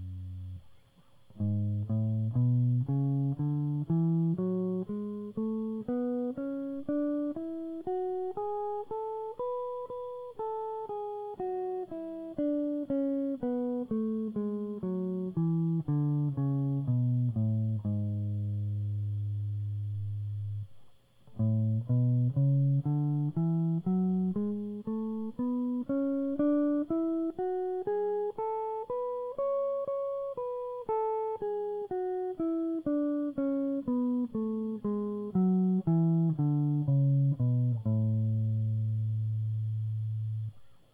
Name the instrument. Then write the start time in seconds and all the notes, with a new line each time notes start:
electric guitar
1.42 G#2
1.91 A2
2.37 B2
2.89 C#3
3.40 D3
3.91 E3
4.39 F#3
4.91 G#3
5.38 A3
5.88 B3
6.39 C#4
6.88 D4
7.36 E4
7.87 F#4
8.37 G#4
8.91 A4
9.39 B4
9.88 B4
10.39 A4
10.89 G#4
11.40 F#4
11.89 E4
12.38 D4
12.90 C#4
13.43 B3
13.91 A3
14.36 G#3
14.83 F#3
15.37 E3
15.89 D3
16.39 C#3
16.89 B2
17.39 A2
17.87 G#2
21.41 A2
21.91 B2
22.38 C#3
22.86 D3
23.38 E3
23.87 F#3
24.37 G#3
24.88 A3
25.39 B3
25.89 C#4
26.39 D4
26.90 E4
27.38 F#4
27.87 G#4
28.38 A4
28.90 B4
29.38 C#5
29.87 C#5
30.37 B4
30.89 A4
31.42 G#4
31.91 F#4
32.40 E4
32.86 D4
33.38 C#4
33.88 B3
34.35 A3
34.85 G#3
35.36 F#3
35.88 E3
36.40 D3
36.89 C#3
37.41 B2
37.87 A2